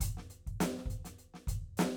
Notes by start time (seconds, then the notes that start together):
0.01 closed hi-hat, kick
0.17 snare
0.30 closed hi-hat
0.47 kick, closed hi-hat
0.60 closed hi-hat, snare
0.78 snare
0.86 kick
0.90 closed hi-hat
1.05 closed hi-hat, snare
1.19 closed hi-hat
1.34 snare
1.47 open hi-hat, kick
1.77 closed hi-hat, snare, hi-hat pedal
1.84 snare